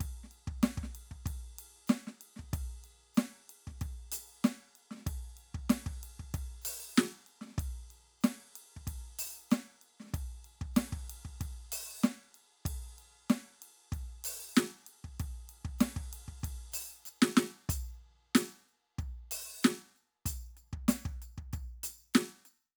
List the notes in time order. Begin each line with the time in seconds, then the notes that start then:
0.01 kick, ride
0.24 snare
0.32 ride
0.48 kick
0.64 snare, ride
0.78 kick
0.84 snare
0.96 ride
1.12 kick
1.26 kick, ride
1.59 ride
1.88 snare, ride, percussion
2.08 snare
2.22 ride
2.37 kick, snare
2.54 kick, ride
2.84 ride
3.15 snare, ride, percussion
3.50 ride
3.68 kick, snare
3.82 kick, ride
4.12 ride, percussion
4.45 snare, ride, percussion
4.76 ride
4.91 snare
4.95 snare
4.98 snare
5.01 snare
5.05 kick, snare, ride
5.38 ride
5.55 kick
5.70 snare, ride
5.87 kick
6.04 ride
6.20 kick
6.35 kick, ride
6.62 ride, percussion
6.66 percussion
6.97 snare, ride, percussion
7.27 ride
7.42 snare
7.46 snare
7.49 snare
7.51 snare
7.53 snare
7.57 kick, snare, ride
7.91 ride
8.21 snare, ride, percussion
8.56 ride
8.77 kick
8.88 kick, ride
9.19 ride, percussion
9.51 snare, ride, percussion
9.82 ride
10.00 snare
10.04 snare
10.07 snare
10.11 kick, snare, ride
10.45 ride
10.62 kick
10.75 snare, ride, percussion
10.93 kick
11.10 ride
11.25 kick
11.41 kick, ride
11.73 ride, percussion
12.04 snare, ride, percussion
12.35 ride
12.66 kick, ride
12.99 ride
13.30 snare, ride
13.63 ride
13.93 kick, ride
14.25 ride, percussion
14.57 snare, ride, percussion
14.87 ride
15.05 kick
15.20 kick, ride
15.50 ride
15.65 kick
15.79 snare, ride, percussion
15.97 kick
16.14 ride
16.29 kick
16.40 kick, percussion
16.45 ride
16.73 percussion
17.06 percussion
17.23 snare
17.37 snare
17.70 kick, percussion
18.03 percussion
18.36 snare, percussion
18.69 percussion
18.99 kick, percussion
19.32 percussion
19.64 snare, percussion
19.66 percussion
19.97 percussion
20.26 kick, percussion
20.57 percussion
20.73 kick
20.89 snare, percussion
21.06 kick
21.22 percussion
21.38 kick
21.53 kick, percussion
21.84 percussion
22.15 snare, percussion
22.17 percussion
22.46 percussion